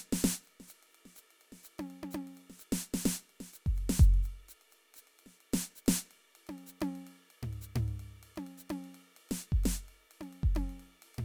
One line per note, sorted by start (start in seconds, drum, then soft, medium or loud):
0.01 ride soft
0.13 snare medium
0.22 snare loud
0.22 hi-hat pedal medium
0.22 ride medium
0.38 ride soft
0.43 hi-hat pedal soft
0.48 ride soft
0.61 snare soft
0.68 hi-hat pedal medium
0.68 ride medium
0.83 ride medium
0.90 hi-hat pedal soft
0.95 ride medium
1.06 snare soft
1.16 hi-hat pedal medium
1.16 ride medium
1.31 ride soft
1.38 hi-hat pedal soft
1.38 ride medium
1.53 snare soft
1.64 hi-hat pedal medium
1.64 ride medium
1.79 high tom medium
1.79 ride medium
1.85 hi-hat pedal soft
1.91 ride medium
2.04 high tom medium
2.11 hi-hat pedal medium
2.11 high tom medium
2.11 ride medium
2.28 ride medium
2.33 hi-hat pedal soft
2.38 ride medium
2.50 snare soft
2.59 hi-hat pedal medium
2.59 ride medium
2.73 snare medium
2.73 ride soft
2.81 hi-hat pedal soft
2.81 ride soft
2.95 snare medium
3.06 snare loud
3.06 hi-hat pedal medium
3.06 ride medium
3.20 ride soft
3.30 ride soft
3.41 snare soft
3.53 hi-hat pedal medium
3.53 ride medium
3.67 kick medium
3.67 ride soft
3.75 hi-hat pedal soft
3.75 ride medium
3.90 snare medium
4.00 kick loud
4.00 hi-hat pedal medium
4.00 ride medium
4.15 ride soft
4.23 hi-hat pedal soft
4.23 ride medium
4.49 hi-hat pedal medium
4.49 ride medium
4.62 ride soft
4.71 hi-hat pedal soft
4.71 ride medium
4.95 hi-hat pedal medium
4.95 ride medium
5.08 ride soft
5.17 hi-hat pedal soft
5.17 ride medium
5.27 snare soft
5.41 ride soft
5.54 snare loud
5.54 ride medium
5.65 ride soft
5.76 hi-hat pedal medium
5.87 snare loud
5.87 ride medium
6.00 ride medium
6.12 ride medium
6.36 ride medium
6.48 high tom medium
6.48 ride medium
6.59 ride medium
6.67 hi-hat pedal medium
6.82 high tom loud
6.82 ride medium
6.96 ride medium
7.08 ride medium
7.31 ride medium
7.43 floor tom medium
7.43 ride soft
7.54 ride soft
7.62 hi-hat pedal medium
7.76 floor tom loud
7.76 ride medium
7.89 ride soft
8.00 ride medium
8.24 ride medium
8.37 high tom medium
8.37 ride medium
8.47 ride medium
8.58 hi-hat pedal medium
8.70 high tom loud
8.70 ride medium
8.85 ride soft
8.95 ride medium
9.17 ride medium
9.30 snare medium
9.30 ride medium
9.41 ride medium
9.53 kick medium
9.64 snare medium
9.64 ride medium
9.78 ride soft
9.89 ride medium
10.12 ride medium
10.21 high tom medium
10.21 ride medium
10.33 ride medium
10.44 kick medium
10.56 high tom loud
10.56 ride medium
10.70 ride soft
10.80 ride medium
11.03 ride medium
11.15 floor tom medium
11.15 ride medium